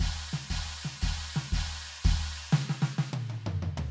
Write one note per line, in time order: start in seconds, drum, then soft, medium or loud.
0.01 kick medium
0.01 crash loud
0.33 snare medium
0.50 kick medium
0.50 crash loud
0.85 snare medium
1.01 kick medium
1.01 crash loud
1.36 snare medium
1.52 kick medium
1.52 crash loud
2.04 kick loud
2.04 crash loud
2.52 snare loud
2.69 snare medium
2.82 snare loud
2.98 snare loud
3.13 high tom loud
3.30 high tom medium
3.46 mid tom loud
3.62 mid tom loud
3.77 floor tom loud